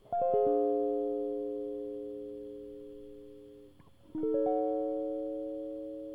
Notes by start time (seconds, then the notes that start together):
0.12 F5
0.22 C5
0.33 G#4
0.48 D4
4.14 D#4
4.23 A4
4.35 C#5
4.48 F#5